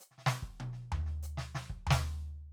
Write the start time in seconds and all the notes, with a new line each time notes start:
0.00 hi-hat pedal
0.11 snare
0.18 snare
0.26 snare
0.42 kick
0.60 closed hi-hat, high tom
0.72 snare
0.82 snare
0.92 floor tom
1.06 snare
1.23 hi-hat pedal
1.37 snare
1.55 snare
1.70 kick
1.87 snare, floor tom